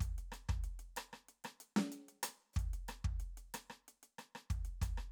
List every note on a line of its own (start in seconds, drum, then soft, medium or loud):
0.01 kick medium
0.01 closed hi-hat medium
0.19 closed hi-hat soft
0.32 cross-stick medium
0.32 closed hi-hat soft
0.49 kick medium
0.49 cross-stick medium
0.64 closed hi-hat soft
0.80 closed hi-hat soft
0.97 cross-stick medium
0.97 closed hi-hat medium
1.14 cross-stick medium
1.29 closed hi-hat soft
1.45 cross-stick medium
1.45 closed hi-hat soft
1.61 closed hi-hat medium
1.77 snare medium
1.92 closed hi-hat medium
2.09 closed hi-hat soft
2.24 cross-stick medium
2.24 open hi-hat loud
2.29 cross-stick soft
2.54 kick medium
2.54 hi-hat pedal soft
2.60 closed hi-hat soft
2.74 closed hi-hat soft
2.89 cross-stick medium
2.89 closed hi-hat medium
3.05 kick medium
3.20 closed hi-hat soft
3.38 closed hi-hat soft
3.55 cross-stick medium
3.55 closed hi-hat medium
3.70 cross-stick medium
3.89 closed hi-hat soft
4.04 closed hi-hat soft
4.19 cross-stick medium
4.19 closed hi-hat soft
4.36 cross-stick medium
4.51 kick medium
4.51 closed hi-hat soft
4.65 closed hi-hat soft
4.82 kick medium
4.82 cross-stick medium
4.82 closed hi-hat medium
4.98 cross-stick medium